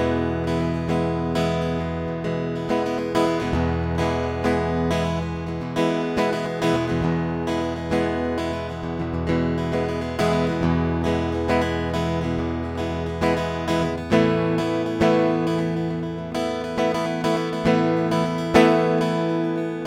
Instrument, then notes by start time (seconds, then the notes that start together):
acoustic guitar
0.00 E2 B2 E3 G#3 B3 E4
0.48 E3 G#3 B3 E4
0.60 E3 G#3 B3
0.75 B3 E4
0.89 B2 E3 G#3 B3 E4
1.36 E3 G#3 B3 E4
1.62 E4
1.79 B2 E3
2.09 B2
2.26 B2 E3 G#3
2.57 G#3 B3 E4
2.69 B2 E3 G#3 B3 E4
2.80 G#3 B3 E4
2.94 B3
2.99 G#3 E4
3.16 E3 G#3 B3 E4
3.26 B2 E3 G#3 B3
3.32 E2
3.39 E3 G#3 B3 E4
3.44 B2
3.54 E2 B2
4.00 E2 B2 E3 G#3 B3 E4
4.44 B2 E3 G#3 B3 E4
4.92 B2 E3 G#3 B3 E4
5.05 G#3 B3
5.16 G#3 B3
5.24 E3
5.35 E2 B2
5.48 B2 E3 G#3 B3
5.62 E2 B2 E3
5.77 B2 E3 G#3 B3 E4
6.17 B2 E3 G#3 B3 E4
6.31 G#3 B3 E4
6.36 E3
6.45 G#3 B3 E4
6.63 B2 E3 G#3 B3 E4
6.74 E2 B2 E3 G#3 B3
6.79 E4
6.89 E2 B2 E3 G#3 B3
7.04 E2 B2
7.48 E3 G#3 B3 E4
7.61 E3 G#3 B3
7.75 G#3 B3 E4
7.92 B2 E3 G#3 B3 E4
8.39 B2 E3 G#3 B3 E4
8.52 B2 E3 G#3 B3
8.69 G#3 B3 E4
8.73 E3
8.84 E2
9.01 E2 B2 E3
9.15 E2 B2
9.23 B2
9.28 E2 B2 E3 G#3
9.59 G#3 B3 E4
9.73 E3 G#3 B3 E4
9.85 G#3 B3
9.90 E4
10.02 G#3 B3
10.20 B2 E3 G#3 B3 E4
10.32 B2 E3 G#3 B3
10.46 G#3 B3 E4
10.52 B2 E3
10.64 E2 B2 E3
11.05 B2 E3 G#3 B3 E4
11.21 E3
11.31 G#3 E4
11.36 E3
11.49 E3 G#3 B3 E4
11.62 B3 E4
11.95 E3 G#3 B3 E4
12.08 E2 E3 G#3
12.20 G#3 B3 E4
12.26 B2 E4
12.39 E2 B2
12.55 G#3
12.64 B2 E3
12.79 B2 E3 G#3 B3 E4
12.93 B2 E4
13.08 E3 G#3 B3 E4
13.22 E3 G#3 B3 E4
13.36 G#3 B3 E4
13.40 E3
13.69 B2 E3 G#3 B3 E4
13.82 B2 E3 B3
13.86 A2 E4
13.96 B3 E4
14.11 E2 A2 E3 A3 B3 E4
14.59 E3 A3 B3 E4
14.83 B3
14.87 A3 E4
15.01 A2 E3 A3 B3 E4
15.48 A3 B3 E4
15.60 A3 B3 E4
15.73 A3 B3 E4
15.92 A3 B3
16.04 B3 E4
16.35 B3 E4
16.46 B3
16.62 A3 E4
16.78 E3 A3 B3 E4
16.93 B3 E4
17.06 A3 B3 E4
17.25 E3 A#3 B3 E4
17.37 B3 E4
17.50 B3
17.54 E3 A3 E4
17.65 A2 E3 A3 B3 E4
17.98 E4
18.12 A2 E3 A#3 B3 E4
18.24 A2 E3 B3
18.39 E4
18.55 E3 A3 B3 E4
18.97 B3
19.02 A#3 E4
19.30 E4
19.45 B3
19.59 B3